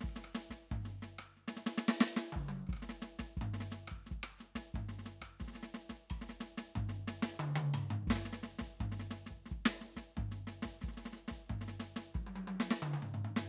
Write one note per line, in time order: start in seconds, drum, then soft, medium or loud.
0.01 kick soft
0.01 snare soft
0.09 cross-stick soft
0.15 snare soft
0.15 snare medium
0.24 cross-stick medium
0.35 snare medium
0.35 hi-hat pedal medium
0.50 kick soft
0.50 snare soft
0.72 kick soft
0.72 floor tom medium
0.85 snare soft
1.03 snare soft
1.03 hi-hat pedal medium
1.19 cross-stick medium
1.37 snare soft
1.48 snare medium
1.57 snare soft
1.67 snare medium
1.78 snare medium
1.88 snare loud
2.01 snare loud
2.17 snare medium
2.33 kick soft
2.33 mid tom medium
2.49 high tom medium
2.67 kick soft
2.67 cross-stick soft
2.73 kick soft
2.73 cross-stick soft
2.77 cross-stick soft
2.82 snare soft
2.89 snare medium
3.02 snare medium
3.19 kick soft
3.19 snare medium
3.37 kick soft
3.42 floor tom medium
3.54 snare soft
3.61 snare soft
3.71 snare soft
3.71 hi-hat pedal medium
3.88 cross-stick medium
3.92 kick soft
4.07 snare soft
4.12 kick soft
4.23 cross-stick medium
4.39 snare soft
4.39 hi-hat pedal medium
4.56 kick soft
4.56 snare medium
4.74 kick soft
4.74 floor tom medium
4.89 snare soft
4.99 snare soft
5.05 snare soft
5.05 hi-hat pedal medium
5.22 kick soft
5.22 cross-stick medium
5.40 kick soft
5.40 snare soft
5.48 snare soft
5.54 snare soft
5.55 snare soft
5.63 snare soft
5.74 snare medium
5.74 hi-hat pedal soft
5.90 kick soft
5.90 snare soft
6.10 kick soft
6.10 floor tom medium
6.22 snare soft
6.29 snare soft
6.41 snare medium
6.41 hi-hat pedal medium
6.58 snare medium
6.76 kick soft
6.76 floor tom medium
6.89 snare soft
7.08 snare medium
7.23 snare medium
7.40 mid tom loud
7.56 mid tom loud
7.74 floor tom loud
7.91 floor tom medium
8.08 kick soft
8.08 snare loud
8.16 snare medium
8.22 snare soft
8.25 snare medium
8.33 snare medium
8.41 snare medium
8.41 hi-hat pedal soft
8.59 kick soft
8.59 snare medium
8.81 kick soft
8.81 floor tom medium
8.92 snare soft
9.00 snare soft
9.11 snare medium
9.11 hi-hat pedal soft
9.27 snare soft
9.31 kick soft
9.46 snare soft
9.52 kick soft
9.66 snare loud
9.81 snare soft
9.81 hi-hat pedal medium
9.97 kick soft
9.97 snare soft
10.17 kick soft
10.17 floor tom medium
10.32 snare soft
10.47 snare soft
10.47 hi-hat pedal medium
10.63 kick soft
10.63 snare medium
10.82 kick soft
10.82 snare soft
10.89 snare soft
10.94 snare soft
10.97 snare soft
11.06 snare soft
11.13 snare soft
11.13 hi-hat pedal medium
11.28 kick soft
11.28 snare medium
11.50 kick soft
11.50 floor tom medium
11.61 snare soft
11.68 snare soft
11.80 snare medium
11.80 hi-hat pedal loud
11.96 snare medium
12.15 kick soft
12.15 high tom soft
12.27 high tom medium
12.36 high tom medium
12.48 high tom medium
12.60 snare medium
12.71 snare loud
12.78 hi-hat pedal soft
12.82 mid tom loud
12.94 mid tom medium
12.99 floor tom medium
12.99 hi-hat pedal soft
13.14 floor tom medium
13.25 floor tom medium
13.37 snare medium